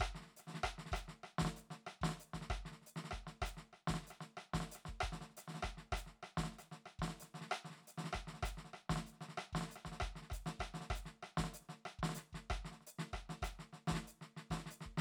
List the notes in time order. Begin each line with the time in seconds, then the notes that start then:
0.01 kick, cross-stick
0.16 snare
0.22 snare
0.27 snare
0.31 snare
0.37 cross-stick, hi-hat pedal
0.46 snare
0.48 snare
0.55 snare
0.64 kick, cross-stick
0.79 snare
0.86 snare
0.93 kick, cross-stick, hi-hat pedal
1.09 snare
1.24 cross-stick
1.39 kick, snare
1.46 snare
1.55 snare, hi-hat pedal
1.71 snare
1.88 cross-stick
2.02 kick, snare
2.10 snare
2.18 snare, hi-hat pedal
2.27 snare
2.34 kick, snare
2.42 snare
2.51 kick, cross-stick
2.66 snare
2.73 snare
2.82 snare
2.87 hi-hat pedal
2.97 snare
3.05 snare
3.12 kick, cross-stick
3.28 snare
3.43 kick, cross-stick
3.47 hi-hat pedal
3.58 snare
3.74 cross-stick
3.88 kick, snare
3.95 snare
4.03 snare
4.08 cross-stick, hi-hat pedal
4.21 snare
4.38 cross-stick
4.55 kick, snare
4.61 snare
4.68 snare, hi-hat pedal
4.76 cross-stick
4.86 kick, snare
5.01 kick, cross-stick
5.13 snare
5.22 snare
5.31 snare
5.38 cross-stick, hi-hat pedal
5.44 snare
5.49 snare
5.55 snare
5.64 kick, cross-stick
5.78 snare
5.93 kick, cross-stick
5.98 hi-hat pedal
6.07 snare
6.24 cross-stick
6.38 kick, snare
6.44 snare
6.53 snare
6.60 cross-stick, hi-hat pedal
6.64 snare
6.72 snare
6.87 cross-stick
7.00 kick, snare
7.09 snare
7.17 snare
7.21 cross-stick, snare, hi-hat pedal
7.29 snare
7.35 snare
7.42 snare
7.47 snare
7.52 cross-stick
7.65 snare
7.71 snare
7.76 snare
7.83 snare
7.88 cross-stick, hi-hat pedal
7.99 snare
8.05 snare
8.14 kick, cross-stick
8.28 snare
8.34 snare
8.44 kick, cross-stick, hi-hat pedal
8.58 snare
8.65 snare
8.74 cross-stick
8.90 kick, snare
8.97 snare
9.06 snare, hi-hat pedal
9.13 snare
9.22 snare
9.30 snare
9.38 cross-stick
9.54 kick, snare
9.62 snare
9.68 snare, hi-hat pedal
9.77 cross-stick
9.86 kick, snare
9.93 snare
10.01 kick, cross-stick
10.16 snare
10.23 snare
10.31 kick, cross-stick, hi-hat pedal
10.47 snare
10.60 kick, cross-stick
10.75 snare
10.82 snare
10.91 kick, cross-stick
10.96 kick, hi-hat pedal
11.06 snare
11.24 cross-stick
11.38 kick, snare
11.45 snare
11.54 snare, hi-hat pedal
11.62 snare
11.70 snare
11.86 cross-stick
12.00 kick
12.04 snare
12.10 snare
12.16 snare, hi-hat pedal
12.34 kick, snare
12.51 kick, cross-stick
12.66 snare
12.72 snare
12.82 snare
12.88 hi-hat pedal
13.00 snare
13.14 kick, cross-stick
13.30 snare
13.43 kick, cross-stick, hi-hat pedal
13.60 snare
13.74 snare
13.88 kick, snare
13.95 snare
14.04 snare
14.08 hi-hat pedal
14.22 snare
14.38 snare
14.51 kick, snare
14.58 snare
14.67 snare
14.72 hi-hat pedal
14.82 snare
14.87 kick
14.98 snare